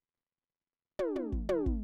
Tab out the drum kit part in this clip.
High tom  |------oo-o--|
Floor tom |------oo-o--|
Kick      |--------o-o-|